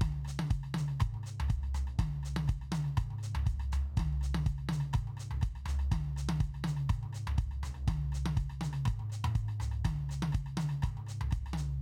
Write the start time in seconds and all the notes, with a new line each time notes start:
0.01 kick, cross-stick, hi-hat pedal, high tom
0.12 high tom
0.16 high tom
0.25 cross-stick, hi-hat pedal
0.39 high tom
0.50 kick, cross-stick, hi-hat pedal
0.63 cross-stick
0.74 hi-hat pedal, high tom
0.88 cross-stick
1.00 kick, cross-stick, hi-hat pedal, mid tom
1.14 mid tom
1.23 cross-stick, hi-hat pedal
1.40 floor tom
1.49 kick, cross-stick, hi-hat pedal
1.63 cross-stick
1.74 floor tom, hi-hat pedal
1.87 cross-stick
1.99 kick, cross-stick, hi-hat pedal, high tom
2.11 high tom
2.15 high tom
2.23 cross-stick, hi-hat pedal
2.36 high tom
2.48 kick, cross-stick, hi-hat pedal
2.61 cross-stick
2.72 hi-hat pedal, high tom
2.84 cross-stick
2.97 kick, cross-stick, hi-hat pedal, mid tom
3.10 mid tom
3.18 cross-stick
3.23 hi-hat pedal
3.35 floor tom
3.46 kick, cross-stick, hi-hat pedal
3.60 cross-stick
3.72 floor tom, hi-hat pedal
3.97 kick, cross-stick, hi-hat pedal, high tom
4.05 high tom
4.13 high tom
4.21 cross-stick, hi-hat pedal
4.34 high tom
4.46 kick, cross-stick, hi-hat pedal
4.58 cross-stick
4.69 hi-hat pedal, high tom
4.80 cross-stick
4.93 kick, cross-stick, hi-hat pedal, mid tom
5.07 mid tom
5.17 cross-stick, hi-hat pedal
5.31 floor tom
5.41 kick, cross-stick, hi-hat pedal
5.55 cross-stick
5.66 floor tom, hi-hat pedal
5.79 cross-stick
5.91 kick, cross-stick, hi-hat pedal, high tom
6.04 high tom
6.07 high tom
6.16 cross-stick, hi-hat pedal
6.29 high tom
6.40 kick, cross-stick, hi-hat pedal
6.54 cross-stick
6.64 hi-hat pedal, high tom
6.77 cross-stick
6.89 kick, cross-stick, hi-hat pedal, mid tom
7.03 mid tom
7.13 cross-stick, hi-hat pedal
7.27 floor tom
7.38 kick, cross-stick, hi-hat pedal
7.51 cross-stick
7.63 floor tom, hi-hat pedal
7.74 cross-stick
7.88 kick, cross-stick, hi-hat pedal, high tom
7.98 high tom
8.01 high tom
8.04 high tom
8.12 cross-stick, hi-hat pedal
8.26 high tom
8.37 kick, cross-stick, hi-hat pedal
8.50 cross-stick
8.61 hi-hat pedal, high tom
8.73 cross-stick
8.85 kick, cross-stick, hi-hat pedal, mid tom
8.99 mid tom
9.10 cross-stick, hi-hat pedal
9.24 cross-stick, mid tom
9.35 kick, hi-hat pedal
9.48 cross-stick
9.60 floor tom, hi-hat pedal
9.71 cross-stick
9.85 kick, cross-stick, hi-hat pedal, high tom
9.96 high tom
9.99 high tom
10.03 high tom
10.09 cross-stick, hi-hat pedal
10.22 high tom
10.32 kick, cross-stick, hi-hat pedal
10.46 cross-stick
10.57 hi-hat pedal, high tom
10.69 cross-stick
10.82 kick, cross-stick, hi-hat pedal, mid tom
10.97 mid tom
11.07 cross-stick, hi-hat pedal
11.21 floor tom
11.31 kick, cross-stick, hi-hat pedal
11.46 cross-stick
11.53 high tom
11.57 hi-hat pedal